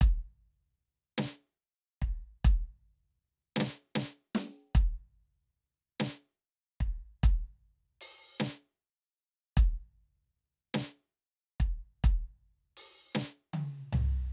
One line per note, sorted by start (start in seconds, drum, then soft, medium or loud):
0.02 kick loud
1.19 snare loud
2.02 kick medium
2.46 kick loud
3.57 snare loud
3.61 snare loud
3.96 snare loud
4.36 snare loud
4.76 kick loud
6.01 snare loud
6.17 snare soft
6.81 kick medium
7.24 kick loud
8.02 percussion loud
8.39 snare loud
8.39 hi-hat pedal soft
8.55 snare soft
9.58 kick loud
10.75 snare loud
11.61 kick medium
12.05 kick loud
12.78 percussion loud
13.13 snare loud
13.13 hi-hat pedal soft
13.54 high tom loud
13.94 floor tom loud